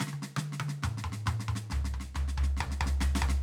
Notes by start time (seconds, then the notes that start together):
0.00 snare, high tom
0.07 snare
0.13 high tom
0.22 snare
0.36 snare, high tom
0.52 snare
0.60 high tom
0.68 snare
0.83 snare, mid tom
0.97 snare
1.04 mid tom
1.12 snare
1.26 snare, mid tom
1.39 snare
1.48 mid tom
1.55 snare
1.70 snare, floor tom
1.73 snare
1.84 snare
1.94 floor tom
2.00 snare
2.02 snare
2.14 snare, floor tom
2.28 snare
2.38 floor tom
2.43 snare
2.57 snare, floor tom
2.71 snare
2.81 floor tom
2.86 snare
3.01 snare, floor tom
3.15 snare
3.18 snare, floor tom
3.29 snare